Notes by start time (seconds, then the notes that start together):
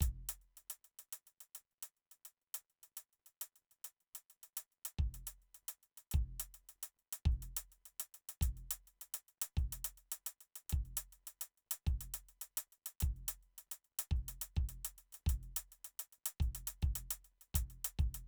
0.00 kick, closed hi-hat, hi-hat pedal
0.29 closed hi-hat
0.41 closed hi-hat
0.57 closed hi-hat
0.70 closed hi-hat
0.84 closed hi-hat
0.99 closed hi-hat
1.12 closed hi-hat
1.27 closed hi-hat
1.40 closed hi-hat
1.55 closed hi-hat
1.71 closed hi-hat
1.82 closed hi-hat
1.97 closed hi-hat
2.11 closed hi-hat
2.25 closed hi-hat
2.41 closed hi-hat
2.54 closed hi-hat
2.70 closed hi-hat
2.83 closed hi-hat
2.97 closed hi-hat
3.13 closed hi-hat
3.26 closed hi-hat
3.41 closed hi-hat
3.56 closed hi-hat
3.71 closed hi-hat
3.84 closed hi-hat
4.00 closed hi-hat
4.15 closed hi-hat
4.30 closed hi-hat
4.43 closed hi-hat
4.57 closed hi-hat
4.72 closed hi-hat
4.85 closed hi-hat
4.98 kick
5.14 closed hi-hat
5.27 closed hi-hat
5.42 closed hi-hat
5.54 closed hi-hat
5.68 closed hi-hat
5.83 closed hi-hat
5.97 closed hi-hat
6.11 kick, closed hi-hat
6.40 closed hi-hat
6.54 closed hi-hat
6.69 closed hi-hat
6.83 closed hi-hat
6.99 closed hi-hat
7.12 closed hi-hat
7.25 kick
7.32 closed hi-hat
7.42 closed hi-hat
7.56 closed hi-hat
7.72 closed hi-hat
7.85 closed hi-hat
8.00 closed hi-hat
8.14 closed hi-hat
8.29 closed hi-hat
8.41 kick, closed hi-hat
8.57 closed hi-hat
8.71 closed hi-hat
8.87 closed hi-hat
9.01 closed hi-hat
9.14 closed hi-hat
9.28 closed hi-hat
9.41 closed hi-hat
9.57 kick, closed hi-hat
9.72 closed hi-hat
9.84 closed hi-hat
9.97 closed hi-hat
10.12 closed hi-hat
10.26 closed hi-hat
10.40 closed hi-hat
10.55 closed hi-hat
10.69 kick, closed hi-hat
10.85 closed hi-hat
10.97 closed hi-hat
11.12 closed hi-hat
11.27 closed hi-hat
11.41 closed hi-hat
11.57 closed hi-hat
11.71 closed hi-hat
11.86 kick, closed hi-hat
12.01 closed hi-hat
12.14 closed hi-hat
12.28 closed hi-hat
12.41 closed hi-hat
12.57 closed hi-hat
12.72 closed hi-hat
12.86 closed hi-hat
13.00 kick, closed hi-hat
13.16 closed hi-hat
13.28 closed hi-hat
13.42 closed hi-hat
13.58 closed hi-hat
13.71 closed hi-hat
13.84 closed hi-hat
13.99 closed hi-hat
14.11 kick
14.16 closed hi-hat
14.28 closed hi-hat
14.41 closed hi-hat
14.56 kick, closed hi-hat
14.69 closed hi-hat
14.85 closed hi-hat
14.98 closed hi-hat
15.12 closed hi-hat
15.14 closed hi-hat
15.26 kick, closed hi-hat
15.43 closed hi-hat
15.56 closed hi-hat
15.72 closed hi-hat
15.84 closed hi-hat
15.99 closed hi-hat
16.12 closed hi-hat
16.26 closed hi-hat
16.40 kick, closed hi-hat
16.55 closed hi-hat
16.67 closed hi-hat
16.82 kick, closed hi-hat
16.95 closed hi-hat
17.10 closed hi-hat
17.24 closed hi-hat
17.41 closed hi-hat
17.54 kick, closed hi-hat
17.70 closed hi-hat
17.84 closed hi-hat
17.99 kick, closed hi-hat
18.14 closed hi-hat